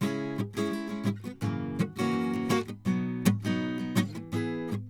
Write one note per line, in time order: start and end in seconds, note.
0.00 0.47 C#3
0.00 0.44 G#3
0.00 0.47 C#4
0.00 0.46 E4
0.00 0.36 G#4
0.58 0.70 G#3
0.58 0.71 C#4
0.58 0.74 E4
0.58 0.74 G#4
0.71 0.84 G#3
0.71 0.89 C#4
0.71 0.88 E4
0.88 1.15 G#3
0.88 1.06 C#4
0.88 1.07 E4
0.88 1.02 G#4
1.06 1.16 C#4
1.06 1.16 E4
1.25 1.37 B3
1.25 1.39 F4
1.42 1.80 F#2
1.42 1.90 C#3
1.42 1.86 E3
1.42 1.90 A#3
1.82 1.99 F#4
1.98 2.34 E3
1.98 2.34 A#3
1.98 2.31 C#4
1.98 2.65 F#4
2.02 2.12 C#3
2.13 2.36 C#3
2.23 2.55 F#2
2.31 2.50 A#3
2.31 2.64 C#4
2.36 2.61 C#3
2.36 2.50 E3
2.50 2.61 E3
2.50 2.64 A#3
2.86 3.32 B2
2.86 3.34 F#3
2.86 3.34 B3
2.86 3.35 D#4
3.47 4.31 B2
3.47 3.81 F#3
3.47 3.79 B3
3.47 3.79 D#4
3.79 3.95 F#3
3.79 3.96 B3
3.79 3.97 D#4
3.97 4.07 F#3
3.97 4.08 B3
3.97 4.07 D#4
4.18 4.30 B3
4.33 4.77 E3
4.33 4.76 B3
4.33 4.78 E4
4.33 4.79 G#4